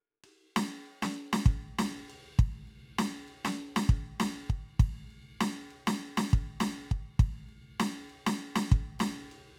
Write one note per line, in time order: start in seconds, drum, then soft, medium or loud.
0.24 ride soft
0.56 snare loud
0.56 ride bell medium
1.02 snare loud
1.16 ride bell soft
1.33 snare loud
1.46 kick loud
1.46 ride bell medium
1.79 snare loud
1.79 ride loud
2.10 ride bell soft
2.39 kick loud
2.39 ride bell medium
2.67 ride soft
2.98 snare loud
2.98 ride bell medium
3.28 ride soft
3.45 snare loud
3.58 ride soft
3.76 snare loud
3.89 kick loud
3.89 snare soft
3.89 ride soft
4.20 snare loud
4.20 ride bell loud
4.50 kick medium
4.50 ride bell soft
4.79 kick loud
4.79 ride bell loud
5.11 ride soft
5.41 snare loud
5.41 ride bell medium
5.71 ride soft
5.87 snare loud
6.00 ride soft
6.17 snare loud
6.31 kick loud
6.31 ride bell medium
6.60 snare loud
6.60 ride bell medium
6.91 kick medium
6.91 ride soft
7.19 kick loud
7.19 ride bell medium
7.49 ride soft
7.80 snare loud
7.80 ride bell medium
8.10 ride soft
8.27 snare loud
8.56 snare loud
8.70 kick loud
8.70 ride bell soft
9.00 snare loud
9.00 ride medium
9.31 ride bell soft